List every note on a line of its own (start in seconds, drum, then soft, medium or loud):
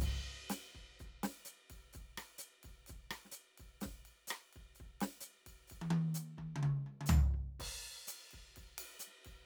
0.01 kick soft
0.01 hi-hat pedal soft
0.01 ride medium
0.09 kick soft
0.50 snare medium
0.50 hi-hat pedal medium
0.50 ride medium
0.75 kick soft
1.00 kick soft
1.00 hi-hat pedal soft
1.06 kick soft
1.24 snare medium
1.24 ride medium
1.46 hi-hat pedal medium
1.46 ride soft
1.70 kick soft
1.70 ride soft
1.93 kick soft
1.93 hi-hat pedal soft
1.93 ride soft
2.01 kick soft
2.18 cross-stick medium
2.18 ride medium
2.39 hi-hat pedal medium
2.39 ride soft
2.64 kick soft
2.64 ride soft
2.70 kick soft
2.87 kick soft
2.87 hi-hat pedal soft
2.87 ride soft
2.95 kick soft
3.11 cross-stick medium
3.11 ride medium
3.26 snare soft
3.32 hi-hat pedal medium
3.32 ride soft
3.58 kick soft
3.58 ride soft
3.81 snare medium
3.81 hi-hat pedal soft
3.81 ride medium
3.85 kick soft
3.91 kick soft
4.06 ride soft
4.28 cross-stick medium
4.28 hi-hat pedal medium
4.28 ride medium
4.53 kick soft
4.53 ride soft
4.75 hi-hat pedal soft
4.75 ride soft
4.81 kick soft
4.86 kick soft
5.01 snare medium
5.01 ride medium
5.21 hi-hat pedal medium
5.21 ride soft
5.47 kick soft
5.47 ride soft
5.68 kick soft
5.68 hi-hat pedal soft
5.68 ride soft
5.82 high tom medium
5.91 high tom loud
6.15 hi-hat pedal medium
6.15 high tom soft
6.38 kick soft
6.38 high tom soft
6.56 mid tom medium
6.63 kick soft
6.63 mid tom medium
6.87 mid tom soft
7.01 mid tom medium
7.07 floor tom loud
7.07 hi-hat pedal medium
7.35 kick soft
7.60 kick soft
7.60 crash medium
7.66 kick soft
8.08 hi-hat pedal medium
8.08 ride medium
8.31 kick soft
8.31 ride soft
8.57 kick soft
8.57 ride soft
8.79 ride loud
9.00 hi-hat pedal medium
9.00 ride soft
9.08 snare soft
9.25 kick soft
9.25 ride soft